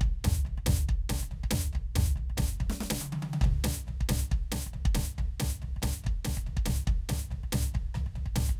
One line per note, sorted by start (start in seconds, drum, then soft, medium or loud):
0.01 kick loud
0.01 floor tom medium
0.24 snare loud
0.24 floor tom loud
0.45 kick soft
0.45 floor tom medium
0.58 kick soft
0.66 snare loud
0.66 floor tom loud
0.89 kick medium
0.89 floor tom medium
1.09 snare loud
1.09 floor tom medium
1.23 kick soft
1.23 snare soft
1.31 floor tom medium
1.44 kick medium
1.51 snare loud
1.51 floor tom loud
1.73 kick medium
1.73 floor tom medium
1.96 snare loud
1.96 floor tom loud
2.16 kick soft
2.16 floor tom medium
2.30 kick soft
2.37 snare loud
2.37 floor tom loud
2.52 snare soft
2.60 kick medium
2.60 floor tom medium
2.70 snare loud
2.81 snare loud
2.90 snare loud
3.01 high tom loud
3.12 high tom loud
3.22 high tom loud
3.33 high tom loud
3.41 kick loud
3.41 floor tom loud
3.64 snare loud
3.64 floor tom loud
3.72 snare soft
3.78 snare soft
3.87 kick soft
3.87 floor tom medium
4.01 kick medium
4.09 snare loud
4.09 floor tom loud
4.29 kick medium
4.29 snare soft
4.29 floor tom medium
4.52 snare loud
4.52 floor tom medium
4.66 kick soft
4.73 floor tom medium
4.85 kick loud
4.95 snare loud
4.95 floor tom loud
5.18 kick medium
5.18 floor tom medium
5.40 snare loud
5.40 floor tom loud
5.62 kick soft
5.62 floor tom medium
5.76 kick soft
5.82 snare loud
5.82 floor tom loud
6.04 kick medium
6.04 floor tom medium
6.25 snare loud
6.25 floor tom loud
6.37 kick medium
6.47 floor tom medium
6.57 kick medium
6.66 snare loud
6.66 floor tom loud
6.87 kick loud
6.87 floor tom medium
7.09 snare loud
7.09 floor tom loud
7.31 kick soft
7.31 floor tom medium
7.44 kick soft
7.52 snare loud
7.52 floor tom loud
7.74 kick medium
7.74 floor tom medium
7.94 cross-stick medium
7.94 floor tom loud
8.06 kick soft
8.16 floor tom medium
8.26 kick medium
8.36 snare loud
8.36 floor tom loud
8.49 kick medium